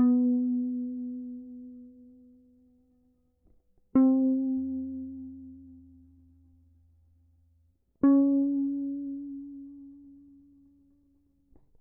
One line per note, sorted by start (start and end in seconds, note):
0.00 2.13 B3
3.94 5.85 C4
8.04 10.22 C#4